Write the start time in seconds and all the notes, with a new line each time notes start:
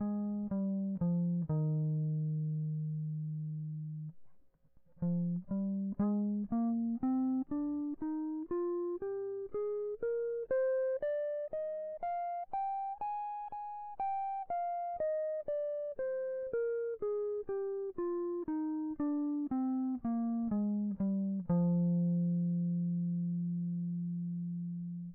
0.02 G#3
0.53 G3
1.03 F3
1.51 D#3
5.04 F3
5.52 G3
6.01 G#3
6.53 A#3
7.04 C4
7.52 D4
8.02 D#4
8.51 F4
9.03 G4
9.55 G#4
10.03 A#4
10.51 C5
11.03 D5
11.54 D#5
12.03 F5
12.54 G5
13.02 G#5
13.53 G#5
14.00 G5
14.51 F5
15.01 D#5
15.49 D5
16.00 C5
16.54 A#4
17.03 G#4
17.49 G4
17.99 F4
18.48 D#4
19.00 D4
19.52 C4
20.06 A#3
20.52 G#3
21.01 G3
21.51 F3